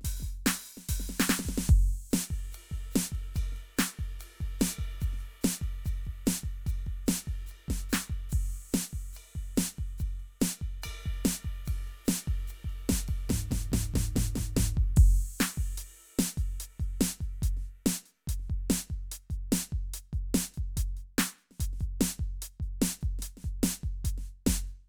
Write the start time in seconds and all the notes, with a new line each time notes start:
0.01 open hi-hat, kick, snare
0.20 kick, snare
0.25 open hi-hat
0.46 open hi-hat, snare
0.66 open hi-hat
0.77 snare
0.89 open hi-hat, kick
1.00 snare
1.09 snare
1.20 snare
1.29 snare
1.39 snare
1.45 kick, snare
1.58 snare
1.69 kick, crash
2.10 snare, hi-hat pedal, ride
2.30 kick, ride
2.52 hi-hat pedal, ride
2.71 kick, ride
2.91 hi-hat pedal
2.96 snare, ride
3.12 kick, ride
3.34 kick, hi-hat pedal, ride bell
3.52 snare
3.56 ride
3.77 snare, hi-hat pedal, ride
3.99 kick, ride
4.19 hi-hat pedal, ride
4.41 kick, ride
4.59 snare, hi-hat pedal, ride bell
4.79 kick
5.00 kick, hi-hat pedal, ride
5.13 snare
5.21 ride
5.41 snare, hi-hat pedal, ride bell
5.61 kick, ride
5.85 kick, hi-hat pedal, ride bell
6.05 kick, ride
6.26 snare, hi-hat pedal, ride bell
6.43 kick, ride
6.66 kick, hi-hat pedal, ride bell
6.86 kick, ride
7.06 snare, hi-hat pedal, ride
7.27 kick, ride
7.46 hi-hat pedal
7.51 ride bell
7.68 kick, snare, ride
7.89 snare, hi-hat pedal, ride bell
8.10 kick, ride
8.29 kick, hi-hat pedal, crash
8.50 ride
8.72 snare, hi-hat pedal, ride bell
8.93 kick, ride
9.12 hi-hat pedal
9.17 ride bell
9.35 kick, ride
9.56 snare, hi-hat pedal, ride bell
9.78 kick, ride
9.98 kick, hi-hat pedal, ride bell
10.20 ride
10.40 snare, hi-hat pedal, ride bell
10.61 kick, ride
10.82 kick, hi-hat pedal, ride bell
11.03 kick, ride
11.24 snare, hi-hat pedal, ride bell
11.45 kick, ride
11.65 kick, hi-hat pedal, ride
11.87 ride
12.05 snare, hi-hat pedal
12.09 ride
12.27 kick, ride
12.47 hi-hat pedal, ride
12.64 kick
12.70 ride
12.89 kick, snare, ride bell
13.08 kick, ride
13.29 kick, snare, floor tom
13.51 kick, snare, floor tom
13.72 kick, snare, floor tom
13.94 kick, snare, floor tom
14.16 kick, snare, floor tom
14.35 kick, snare, floor tom
14.56 kick, snare, floor tom
14.77 kick
14.96 kick, crash
15.39 snare, hi-hat pedal, ride
15.57 kick
15.77 closed hi-hat
15.97 closed hi-hat
16.19 closed hi-hat, snare
16.37 closed hi-hat, kick
16.60 closed hi-hat
16.80 kick, closed hi-hat
17.01 closed hi-hat, snare
17.21 kick, closed hi-hat
17.42 closed hi-hat, kick
17.57 snare
17.63 closed hi-hat
17.86 closed hi-hat, snare
18.06 closed hi-hat
18.27 closed hi-hat, kick
18.39 snare
18.50 kick, closed hi-hat
18.70 closed hi-hat, snare
18.90 kick, closed hi-hat
19.12 closed hi-hat
19.30 closed hi-hat, kick
19.52 closed hi-hat, snare
19.72 kick
19.94 closed hi-hat
20.13 kick, closed hi-hat
20.34 closed hi-hat, snare
20.54 closed hi-hat, kick
20.77 closed hi-hat, kick
20.97 closed hi-hat
21.18 closed hi-hat, snare
21.38 closed hi-hat
21.51 snare
21.60 closed hi-hat, kick
21.73 snare
21.80 kick, closed hi-hat
22.01 closed hi-hat, snare
22.19 kick, closed hi-hat
22.42 closed hi-hat
22.60 kick, closed hi-hat
22.82 closed hi-hat, snare
23.01 kick, closed hi-hat
23.19 closed hi-hat, snare
23.37 snare
23.42 kick, closed hi-hat
23.63 closed hi-hat, snare
23.83 kick, closed hi-hat
24.05 closed hi-hat, kick
24.18 snare
24.25 closed hi-hat
24.46 closed hi-hat, kick, snare
24.67 closed hi-hat